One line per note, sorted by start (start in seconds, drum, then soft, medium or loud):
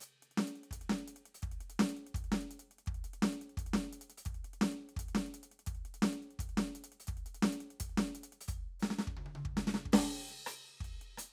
0.01 hi-hat pedal medium
0.23 closed hi-hat soft
0.32 closed hi-hat soft
0.38 snare medium
0.48 closed hi-hat medium
0.56 closed hi-hat soft
0.64 closed hi-hat soft
0.71 kick soft
0.71 closed hi-hat medium
0.82 closed hi-hat soft
0.90 snare medium
0.99 closed hi-hat soft
1.08 closed hi-hat medium
1.17 closed hi-hat soft
1.26 closed hi-hat soft
1.35 closed hi-hat soft
1.43 kick medium
1.43 closed hi-hat soft
1.52 closed hi-hat soft
1.61 closed hi-hat soft
1.70 closed hi-hat medium
1.80 snare loud
1.90 closed hi-hat medium
1.97 closed hi-hat soft
2.07 closed hi-hat soft
2.15 kick medium
2.15 closed hi-hat medium
2.25 closed hi-hat soft
2.32 snare medium
2.41 closed hi-hat soft
2.51 closed hi-hat medium
2.60 closed hi-hat medium
2.72 closed hi-hat soft
2.79 closed hi-hat soft
2.87 kick medium
2.87 closed hi-hat soft
2.95 closed hi-hat soft
3.05 closed hi-hat medium
3.14 closed hi-hat soft
3.23 snare medium
3.33 closed hi-hat soft
3.42 closed hi-hat soft
3.50 closed hi-hat soft
3.58 kick medium
3.58 closed hi-hat medium
3.67 closed hi-hat soft
3.74 snare medium
3.85 closed hi-hat soft
3.93 closed hi-hat medium
4.02 closed hi-hat medium
4.10 closed hi-hat medium
4.18 closed hi-hat medium
4.26 kick medium
4.26 closed hi-hat medium
4.35 closed hi-hat soft
4.45 closed hi-hat soft
4.54 closed hi-hat soft
4.62 snare medium
4.72 closed hi-hat soft
4.82 closed hi-hat soft
4.89 closed hi-hat soft
4.97 kick medium
4.97 closed hi-hat medium
5.09 closed hi-hat soft
5.15 snare medium
5.27 closed hi-hat soft
5.35 closed hi-hat medium
5.44 closed hi-hat medium
5.52 closed hi-hat soft
5.60 closed hi-hat soft
5.67 kick medium
5.67 closed hi-hat medium
5.75 closed hi-hat soft
5.86 closed hi-hat soft
5.95 closed hi-hat medium
6.03 snare loud
6.13 closed hi-hat soft
6.23 closed hi-hat soft
6.31 closed hi-hat soft
6.40 kick medium
6.40 closed hi-hat medium
6.50 closed hi-hat soft
6.58 snare medium
6.68 closed hi-hat soft
6.76 closed hi-hat medium
6.84 closed hi-hat medium
6.92 closed hi-hat soft
7.00 closed hi-hat soft
7.08 kick medium
7.08 closed hi-hat medium
7.18 closed hi-hat soft
7.27 closed hi-hat medium
7.35 closed hi-hat medium
7.43 snare loud
7.53 closed hi-hat medium
7.61 closed hi-hat soft
7.71 closed hi-hat soft
7.81 kick soft
7.81 closed hi-hat loud
7.90 closed hi-hat soft
7.98 snare medium
8.08 closed hi-hat soft
8.15 closed hi-hat medium
8.24 closed hi-hat medium
8.33 closed hi-hat soft
8.41 closed hi-hat medium
8.48 open hi-hat medium
8.48 kick medium
8.80 snare medium
8.80 hi-hat pedal soft
8.91 snare medium
8.99 snare medium
9.08 kick medium
9.17 high tom soft
9.26 high tom medium
9.36 high tom medium
9.46 kick medium
9.57 snare medium
9.68 snare medium
9.74 snare medium
9.86 kick soft
9.93 snare loud
9.93 crash medium
9.98 cross-stick medium
10.29 closed hi-hat medium
10.47 open hi-hat medium
10.47 cross-stick medium
10.62 hi-hat pedal soft
10.69 closed hi-hat soft
10.81 kick soft
10.81 closed hi-hat soft
11.02 closed hi-hat soft
11.18 closed hi-hat loud
11.18 cross-stick medium